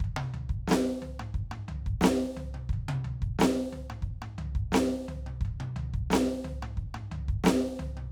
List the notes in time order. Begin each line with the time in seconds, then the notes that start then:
0.00 kick, floor tom
0.16 high tom
0.34 floor tom
0.49 kick
0.68 snare
0.71 snare
1.02 floor tom
1.19 mid tom
1.34 kick
1.51 mid tom
1.68 floor tom
1.86 kick
2.01 snare
2.04 snare
2.37 floor tom
2.54 high tom
2.69 kick, floor tom
2.88 high tom
3.04 floor tom
3.22 kick
3.39 snare
3.41 snare
3.73 floor tom
3.90 mid tom
4.02 kick
4.22 mid tom
4.38 floor tom
4.55 kick
4.72 snare
4.74 snare
5.08 floor tom
5.26 high tom
5.41 kick
5.45 floor tom
5.60 high tom
5.76 floor tom
5.94 kick
6.10 snare
6.13 snare
6.44 floor tom
6.62 mid tom
6.77 kick
6.94 mid tom
7.12 floor tom
7.28 kick
7.44 snare
7.46 snare
7.79 floor tom
7.97 high tom